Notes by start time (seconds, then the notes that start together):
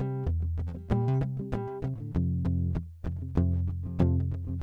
0.00 C3 G3
0.92 A#2 G3
1.10 C3
1.23 C3 G3
1.39 C3 G3
1.54 A#2 G3
1.69 C3
1.84 C3
1.98 D3
2.04 A2
2.17 F2 C3
2.47 E2 C3
3.38 F2 C3
3.69 F2 C3
3.85 F2 C3
4.01 F2 C3 F3
4.22 F2
4.33 F2 C3
4.47 F2 C3